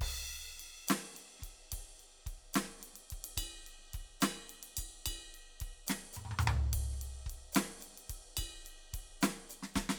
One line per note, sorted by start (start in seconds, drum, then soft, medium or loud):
0.01 kick soft
0.01 crash loud
0.07 kick soft
0.55 snare soft
0.60 ride medium
0.87 snare loud
0.87 hi-hat pedal medium
0.87 ride loud
1.14 snare soft
1.14 hi-hat pedal soft
1.14 ride medium
1.39 kick soft
1.39 snare soft
1.44 ride medium
1.72 kick soft
1.72 ride loud
1.78 kick soft
2.00 ride soft
2.26 kick soft
2.26 ride medium
2.53 snare medium
2.53 hi-hat pedal medium
2.53 ride loud
2.63 snare soft
2.80 snare soft
2.80 hi-hat pedal soft
2.80 ride medium
2.87 snare soft
2.93 snare soft
2.93 ride medium
2.99 snare soft
3.10 kick soft
3.10 ride medium
3.24 ride medium
3.37 kick soft
3.37 ride bell loud
3.43 kick soft
3.67 ride soft
3.78 snare soft
3.81 snare soft
3.94 kick soft
3.94 ride medium
4.00 kick soft
4.20 snare loud
4.20 hi-hat pedal medium
4.20 ride bell loud
4.48 hi-hat pedal soft
4.48 ride medium
4.55 snare soft
4.63 ride medium
4.77 kick soft
4.77 ride bell loud
5.06 kick soft
5.06 ride bell loud
5.13 kick soft
5.34 ride soft
5.60 kick soft
5.60 ride medium
5.68 kick soft
5.87 snare medium
5.87 hi-hat pedal medium
5.87 ride loud
6.13 hi-hat pedal medium
6.13 mid tom medium
6.25 mid tom medium
6.31 mid tom medium
6.39 hi-hat pedal medium
6.39 mid tom loud
6.47 floor tom loud
6.73 kick soft
6.73 ride loud
6.84 kick soft
6.93 snare soft
7.02 ride medium
7.26 kick soft
7.26 ride medium
7.34 kick soft
7.52 snare loud
7.52 hi-hat pedal medium
7.52 ride loud
7.80 snare soft
7.80 hi-hat pedal soft
7.80 ride medium
7.88 snare soft
7.93 snare soft
7.97 snare soft
7.97 ride medium
8.07 kick soft
8.07 hi-hat pedal soft
8.07 ride medium
8.37 kick soft
8.37 ride bell loud
8.45 kick soft
8.65 hi-hat pedal soft
8.65 ride medium
8.94 kick soft
8.94 ride medium
9.21 snare loud
9.21 hi-hat pedal medium
9.21 ride medium
9.29 snare soft
9.49 hi-hat pedal medium
9.49 ride medium
9.63 snare medium
9.74 kick soft
9.74 snare loud
9.74 hi-hat pedal soft
9.89 snare medium